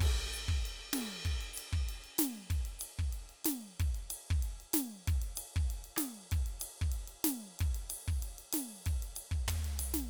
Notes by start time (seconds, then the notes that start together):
0.01 kick, crash, ride
0.33 hi-hat pedal, ride
0.49 kick
0.66 ride
0.94 snare, hi-hat pedal, ride
1.25 kick, ride
1.41 ride
1.54 hi-hat pedal
1.58 ride
1.73 kick
1.89 ride
2.04 ride
2.19 snare, hi-hat pedal, ride
2.36 snare
2.51 kick, ride
2.66 ride
2.80 hi-hat pedal, ride
2.99 kick
3.13 ride
3.30 ride
3.45 snare, hi-hat pedal, ride
3.80 kick, ride
3.95 ride
4.10 hi-hat pedal, ride
4.31 kick
4.43 ride
4.61 ride
4.74 snare, hi-hat pedal, ride
5.08 kick, ride
5.22 ride
5.36 hi-hat pedal, ride
5.56 kick
5.71 ride
5.85 ride
5.97 cross-stick, snare, hi-hat pedal, ride
6.32 kick, ride
6.47 ride
6.60 hi-hat pedal, ride
6.82 kick
6.92 ride
7.08 ride
7.25 snare, hi-hat pedal, ride
7.60 kick, ride
7.75 ride
7.90 hi-hat pedal, ride
8.08 kick
8.23 ride
8.39 ride
8.53 snare, hi-hat pedal, ride
8.86 kick, ride
9.03 ride
9.16 hi-hat pedal, ride
9.32 kick
9.48 floor tom, ride
9.65 ride
9.80 hi-hat pedal, ride
9.94 snare